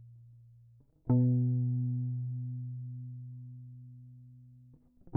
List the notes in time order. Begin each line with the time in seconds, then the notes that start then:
1.10 B2